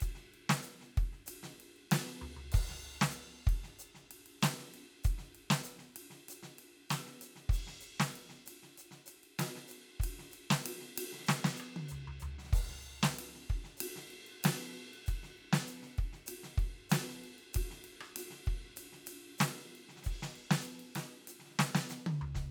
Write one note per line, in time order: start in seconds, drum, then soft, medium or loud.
0.01 kick soft
0.01 hi-hat pedal medium
0.01 ride medium
0.15 snare soft
0.34 ride soft
0.50 snare loud
0.62 hi-hat pedal medium
0.62 ride soft
0.81 snare soft
0.98 kick medium
0.98 ride soft
1.13 snare soft
1.26 hi-hat pedal medium
1.26 ride medium
1.43 snare medium
1.60 ride soft
1.77 ride soft
1.92 snare loud
1.92 hi-hat pedal medium
1.92 ride loud
2.07 snare soft
2.22 floor tom medium
2.37 floor tom soft
2.52 kick medium
2.52 hi-hat pedal medium
2.52 crash medium
2.69 snare soft
2.83 ride soft
3.02 snare loud
3.11 hi-hat pedal medium
3.47 kick medium
3.47 ride medium
3.64 snare soft
3.79 hi-hat pedal medium
3.79 ride soft
3.95 snare soft
4.11 ride medium
4.26 ride soft
4.42 snare loud
4.42 hi-hat pedal medium
4.42 ride medium
4.59 snare soft
4.74 ride soft
5.04 kick medium
5.04 hi-hat pedal medium
5.04 ride medium
5.18 snare soft
5.35 ride soft
5.50 snare loud
5.64 hi-hat pedal medium
5.64 ride soft
5.79 snare soft
5.96 ride medium
6.11 snare soft
6.29 hi-hat pedal medium
6.29 ride medium
6.43 snare soft
6.59 ride medium
6.90 snare loud
6.90 hi-hat pedal medium
6.90 ride medium
7.07 snare soft
7.21 hi-hat pedal medium
7.21 ride medium
7.36 snare soft
7.43 snare soft
7.49 kick medium
7.49 hi-hat pedal medium
7.49 ride medium
7.67 snare soft
7.81 hi-hat pedal medium
7.81 ride soft
8.00 snare loud
8.11 hi-hat pedal soft
8.16 ride soft
8.29 snare soft
8.46 hi-hat pedal medium
8.46 ride medium
8.63 snare soft
8.78 hi-hat pedal medium
8.78 ride soft
8.91 snare soft
9.06 hi-hat pedal medium
9.06 ride medium
9.24 ride soft
9.39 snare loud
9.39 hi-hat pedal medium
9.39 ride loud
9.56 snare soft
9.68 hi-hat pedal medium
9.68 ride soft
10.00 kick medium
10.00 hi-hat pedal medium
10.00 ride medium
10.19 snare soft
10.32 hi-hat pedal soft
10.32 ride medium
10.51 snare loud
10.62 hi-hat pedal medium
10.66 ride loud
10.80 snare soft
10.96 hi-hat pedal soft
10.96 ride loud
11.13 snare soft
11.19 snare soft
11.23 snare soft
11.23 hi-hat pedal medium
11.29 snare loud
11.45 snare loud
11.57 cross-stick medium
11.57 hi-hat pedal medium
11.76 high tom medium
11.89 floor tom soft
11.89 hi-hat pedal medium
12.08 floor tom medium
12.20 floor tom medium
12.20 hi-hat pedal medium
12.39 snare soft
12.44 snare soft
12.48 snare soft
12.53 kick medium
12.53 snare soft
12.53 hi-hat pedal medium
12.53 crash medium
12.70 snare soft
12.83 ride soft
13.03 snare loud
13.14 hi-hat pedal medium
13.19 ride medium
13.35 snare soft
13.50 kick medium
13.50 ride soft
13.64 snare soft
13.77 hi-hat pedal medium
13.77 ride loud
13.96 snare soft
14.11 ride soft
14.27 ride soft
14.43 snare loud
14.43 hi-hat pedal medium
14.43 ride loud
14.63 snare soft
14.94 ride soft
15.06 kick medium
15.06 hi-hat pedal medium
15.06 ride medium
15.23 snare soft
15.38 ride soft
15.53 snare loud
15.67 hi-hat pedal medium
15.67 ride medium
15.83 snare soft
15.98 kick medium
15.98 ride soft
16.13 snare soft
16.27 hi-hat pedal medium
16.27 ride medium
16.44 snare soft
16.58 kick medium
16.58 ride soft
16.90 snare loud
16.90 hi-hat pedal medium
16.90 ride loud
17.09 snare soft
17.24 ride soft
17.39 ride soft
17.54 kick medium
17.54 hi-hat pedal medium
17.54 ride loud
17.71 snare soft
17.84 ride soft
18.01 cross-stick medium
18.16 hi-hat pedal medium
18.16 ride loud
18.31 snare soft
18.47 kick medium
18.47 ride soft
18.64 snare soft
18.76 hi-hat pedal medium
18.76 ride medium
18.93 snare soft
19.06 hi-hat pedal medium
19.06 ride medium
19.39 snare loud
19.39 hi-hat pedal medium
19.39 ride loud
19.60 snare soft
19.76 ride soft
19.89 snare soft
19.97 snare soft
20.02 snare soft
20.02 hi-hat pedal medium
20.07 kick soft
20.07 ride medium
20.23 snare medium
20.36 ride soft
20.51 snare loud
20.61 hi-hat pedal medium
20.66 ride soft
20.80 ride soft
20.96 snare medium
20.96 ride medium
21.28 hi-hat pedal medium
21.28 ride medium
21.40 snare soft
21.45 snare soft
21.50 snare soft
21.54 snare soft
21.59 snare loud
21.75 snare loud
21.89 snare medium
21.89 hi-hat pedal medium
22.07 high tom loud
22.21 floor tom medium
22.35 kick soft
22.35 snare medium